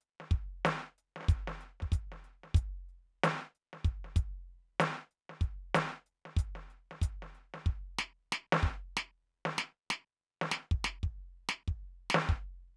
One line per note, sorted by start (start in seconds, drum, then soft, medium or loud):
0.01 closed hi-hat soft
0.20 snare soft
0.31 kick medium
0.31 closed hi-hat soft
0.65 closed hi-hat medium
0.65 snare loud
0.98 closed hi-hat soft
1.16 snare soft
1.21 snare soft
1.23 snare soft
1.25 kick medium
1.25 snare soft
1.30 closed hi-hat medium
1.48 snare medium
1.61 closed hi-hat soft
1.80 kick soft
1.80 snare soft
1.92 closed hi-hat medium
1.92 kick medium
2.12 snare soft
2.24 closed hi-hat soft
2.44 snare soft
2.55 closed hi-hat medium
2.55 kick medium
2.89 closed hi-hat soft
3.24 closed hi-hat medium
3.24 snare loud
3.55 closed hi-hat soft
3.73 snare soft
3.85 kick medium
3.85 closed hi-hat soft
4.05 snare soft
4.16 closed hi-hat medium
4.16 kick medium
4.80 closed hi-hat loud
4.80 snare loud
5.11 closed hi-hat soft
5.30 snare soft
5.41 closed hi-hat soft
5.41 kick medium
5.75 closed hi-hat loud
5.75 snare loud
6.06 closed hi-hat soft
6.26 snare soft
6.37 closed hi-hat loud
6.37 kick medium
6.55 snare soft
6.70 closed hi-hat soft
6.91 snare soft
7.02 closed hi-hat loud
7.02 kick medium
7.22 snare soft
7.35 closed hi-hat soft
7.54 snare soft
7.66 kick medium
7.99 snare loud
8.32 snare loud
8.53 snare loud
8.63 kick medium
8.97 snare loud
9.45 snare medium
9.58 snare loud
9.90 snare loud
10.42 snare medium
10.52 snare loud
10.71 kick medium
10.85 snare loud
11.03 kick medium
11.49 snare loud
11.68 kick medium
12.10 snare loud
12.15 snare loud
12.29 kick medium